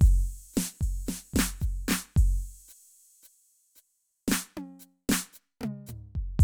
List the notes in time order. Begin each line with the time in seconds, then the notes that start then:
0.01 kick, hi-hat pedal, crash
0.53 snare, hi-hat pedal
0.81 kick, crash
1.06 closed hi-hat, snare, hi-hat pedal
1.33 kick, snare
1.39 snare
1.60 kick, hi-hat pedal
1.88 snare
1.91 snare
2.16 kick, crash
2.68 hi-hat pedal
3.22 hi-hat pedal
3.75 hi-hat pedal
4.28 snare, hi-hat pedal
4.31 snare
4.57 high tom
4.79 hi-hat pedal
5.09 snare
5.11 snare
5.33 hi-hat pedal
5.61 mid tom
5.63 mid tom
5.86 floor tom, hi-hat pedal
6.15 kick
6.39 kick, crash